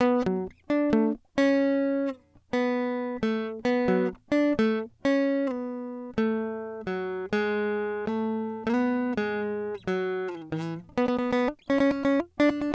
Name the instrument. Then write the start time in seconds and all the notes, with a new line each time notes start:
acoustic guitar
0.01 B3
0.27 F#3
0.71 D4
0.94 A3
1.39 C#4
2.54 B3
3.24 A3
3.66 B3
3.89 F#3
4.33 D4
4.60 A3
5.06 C#4
5.49 B3
6.19 A3
6.88 F#3
7.33 G#3
8.09 A3
8.68 B3
9.19 G#3
9.88 F#3
10.53 E3
10.98 B3
11.10 B3
11.20 B3
11.34 B3
11.71 C#4
11.80 C#4
11.92 C#4
12.04 C#4
12.40 D4
12.50 D4
12.61 D4